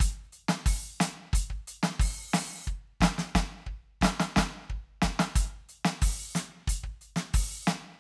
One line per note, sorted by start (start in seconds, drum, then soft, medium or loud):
0.01 closed hi-hat loud
0.01 kick loud
0.24 hi-hat pedal soft
0.33 closed hi-hat medium
0.49 snare loud
0.67 open hi-hat loud
0.67 kick loud
0.99 closed hi-hat loud
0.99 snare loud
0.99 hi-hat pedal soft
1.34 closed hi-hat loud
1.34 kick loud
1.51 kick medium
1.68 closed hi-hat medium
1.84 snare loud
1.90 snare soft
2.00 open hi-hat loud
2.00 kick loud
2.18 kick soft
2.34 open hi-hat loud
2.34 snare loud
2.66 kick medium
2.66 hi-hat pedal soft
3.01 kick medium
3.01 snare loud
3.04 snare loud
3.19 snare loud
3.36 kick loud
3.36 snare loud
3.67 kick medium
3.67 snare soft
4.02 kick medium
4.02 snare loud
4.05 snare loud
4.20 snare loud
4.37 kick medium
4.37 snare loud
4.39 snare loud
4.70 kick medium
5.03 kick medium
5.03 snare loud
5.20 snare loud
5.36 closed hi-hat loud
5.36 kick loud
5.69 closed hi-hat medium
5.85 snare loud
6.02 open hi-hat loud
6.02 kick loud
6.34 closed hi-hat loud
6.34 snare loud
6.34 hi-hat pedal medium
6.68 closed hi-hat loud
6.68 kick loud
6.84 kick medium
7.02 closed hi-hat soft
7.17 snare loud
7.34 open hi-hat loud
7.34 kick loud
7.66 snare loud
7.66 hi-hat pedal medium